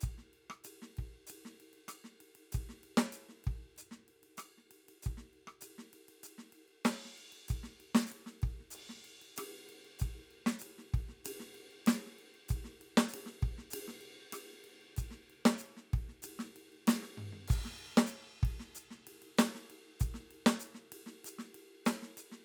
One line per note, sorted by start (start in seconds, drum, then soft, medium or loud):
0.01 kick medium
0.01 hi-hat pedal medium
0.01 ride bell soft
0.18 snare soft
0.34 ride soft
0.50 cross-stick medium
0.64 hi-hat pedal medium
0.64 ride medium
0.82 snare soft
0.98 kick soft
0.98 ride soft
1.27 hi-hat pedal medium
1.27 ride medium
1.46 snare soft
1.61 ride soft
1.74 ride soft
1.89 cross-stick medium
1.89 hi-hat pedal medium
1.89 ride bell medium
2.05 snare soft
2.21 ride soft
2.36 ride soft
2.53 kick medium
2.53 hi-hat pedal medium
2.53 ride medium
2.70 snare soft
2.84 ride soft
2.98 snare loud
3.13 hi-hat pedal medium
3.13 ride medium
3.29 snare soft
3.45 kick medium
3.45 ride soft
3.77 hi-hat pedal medium
3.77 ride soft
3.77 floor tom soft
3.92 snare soft
4.09 ride soft
4.24 ride soft
4.38 cross-stick medium
4.38 hi-hat pedal medium
4.38 ride bell medium
4.58 snare soft
4.71 ride soft
4.89 ride soft
5.03 kick soft
5.03 hi-hat pedal medium
5.03 ride soft
5.18 snare soft
5.34 ride soft
5.48 cross-stick medium
5.61 hi-hat pedal medium
5.61 ride medium
5.79 snare soft
5.94 ride soft
6.09 ride soft
6.24 hi-hat pedal medium
6.24 ride medium
6.39 snare soft
6.53 ride soft
6.68 ride soft
6.85 snare loud
6.85 hi-hat pedal medium
6.85 ride medium
7.05 snare soft
7.18 ride soft
7.33 ride soft
7.49 kick medium
7.49 hi-hat pedal medium
7.49 ride medium
7.64 snare soft
7.81 ride soft
7.95 snare loud
8.07 hi-hat pedal medium
8.12 ride medium
8.27 snare soft
8.42 kick medium
8.42 ride soft
8.60 snare soft
8.71 hi-hat pedal medium
8.71 ride medium
8.90 snare soft
9.05 ride soft
9.22 ride soft
9.37 cross-stick medium
9.37 hi-hat pedal medium
9.37 ride loud
9.70 ride soft
9.85 ride soft
9.99 kick medium
9.99 hi-hat pedal medium
9.99 ride medium
10.19 snare soft
10.31 ride soft
10.47 snare loud
10.60 hi-hat pedal medium
10.60 ride medium
10.79 snare soft
10.94 kick medium
10.94 ride soft
11.09 snare soft
11.25 hi-hat pedal medium
11.25 ride loud
11.40 snare soft
11.55 ride soft
11.71 ride soft
11.87 snare loud
11.87 hi-hat pedal medium
11.87 ride medium
12.07 snare soft
12.19 ride soft
12.35 ride soft
12.49 kick medium
12.49 hi-hat pedal medium
12.49 ride medium
12.65 snare soft
12.82 ride soft
12.98 snare loud
13.09 hi-hat pedal medium
13.14 ride medium
13.26 snare soft
13.43 kick medium
13.43 ride soft
13.59 snare soft
13.71 hi-hat pedal medium
13.71 ride loud
13.88 snare soft
14.01 ride soft
14.18 ride soft
14.33 cross-stick medium
14.33 hi-hat pedal medium
14.33 ride medium
14.53 snare soft
14.65 ride soft
14.82 ride soft
14.97 kick soft
14.97 hi-hat pedal medium
14.97 ride medium
15.11 snare soft
15.30 ride soft
15.46 snare loud
15.59 hi-hat pedal medium
15.59 ride soft
15.77 snare soft
15.94 kick medium
15.94 ride soft
16.09 snare soft
16.23 hi-hat pedal medium
16.23 ride medium
16.40 snare medium
16.57 ride soft
16.73 ride soft
16.88 snare loud
16.88 hi-hat pedal medium
16.88 ride loud
17.03 snare soft
17.18 floor tom medium
17.33 floor tom soft
17.48 kick medium
17.48 hi-hat pedal medium
17.48 crash medium
17.65 snare soft
17.79 ride soft
17.98 snare loud
18.07 hi-hat pedal medium
18.43 kick medium
18.43 ride medium
18.60 snare soft
18.75 hi-hat pedal medium
18.75 ride soft
18.91 snare soft
19.07 ride medium
19.23 ride soft
19.38 snare loud
19.38 hi-hat pedal medium
19.38 ride medium
19.55 snare soft
19.70 ride soft
20.00 kick medium
20.00 hi-hat pedal medium
20.00 ride medium
20.15 snare soft
20.31 ride soft
20.47 snare loud
20.60 hi-hat pedal medium
20.60 ride soft
20.75 snare soft
20.93 ride medium
21.07 snare soft
21.25 hi-hat pedal medium
21.25 ride medium
21.39 snare soft
21.55 ride medium
21.86 snare loud
21.86 hi-hat pedal medium
21.86 ride medium
22.03 snare soft
22.18 hi-hat pedal medium
22.18 ride medium
22.32 snare soft
22.39 snare soft